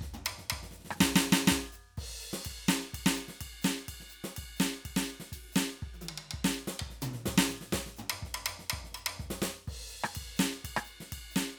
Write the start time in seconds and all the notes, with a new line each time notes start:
0.01 kick, snare
0.07 kick
0.14 floor tom
0.25 hi-hat pedal, floor tom
0.38 snare
0.50 kick, floor tom
0.63 snare
0.71 snare, hi-hat pedal
0.80 snare
0.85 snare
0.91 cross-stick
0.96 snare
1.01 kick, snare
1.08 kick
1.16 snare
1.22 hi-hat pedal
1.32 snare
1.47 kick, snare
1.57 kick
1.72 hi-hat pedal
1.97 kick, crash
2.05 kick
2.10 kick
2.21 hi-hat pedal
2.33 snare
2.45 kick, ride bell
2.52 kick
2.68 snare, hi-hat pedal
2.94 kick, ride bell
3.00 kick
3.06 snare
3.15 hi-hat pedal, ride
3.28 snare
3.41 kick, ride bell
3.62 snare, hi-hat pedal
3.88 kick, ride bell
4.00 snare
4.09 hi-hat pedal, ride
4.24 snare
4.37 kick, ride bell
4.44 kick
4.57 snare, hi-hat pedal
4.85 kick, ride bell
4.96 snare
5.03 hi-hat pedal
5.09 ride
5.20 snare
5.32 kick, ride
5.52 snare, hi-hat pedal
5.82 kick
5.89 kick
5.94 high tom
6.01 hi-hat pedal, high tom
6.09 high tom
6.18 high tom
6.31 kick, high tom
6.39 kick
6.45 snare
6.52 hi-hat pedal, high tom
6.67 snare
6.79 kick, mid tom
6.88 kick, snare
7.02 hi-hat pedal, mid tom
7.13 snare
7.26 kick, snare
7.34 kick
7.38 snare
7.49 snare, hi-hat pedal
7.61 snare
7.72 kick, snare
7.80 kick
7.86 snare
7.97 floor tom, hi-hat pedal
8.10 floor tom
8.22 kick, snare
8.29 kick
8.34 floor tom
8.46 hi-hat pedal, floor tom
8.59 snare
8.70 kick, floor tom
8.84 snare
8.92 snare, hi-hat pedal, floor tom
9.06 floor tom
9.19 kick, snare
9.26 kick
9.30 snare
9.42 snare, hi-hat pedal
9.68 kick, crash
9.78 kick
9.89 hi-hat pedal
10.04 cross-stick
10.15 kick, ride bell
10.23 kick
10.36 snare, hi-hat pedal
10.64 kick, ride bell
10.70 kick
10.77 cross-stick
10.84 hi-hat pedal, ride
11.00 snare
11.12 kick, ride bell
11.18 kick
11.31 hi-hat pedal
11.36 snare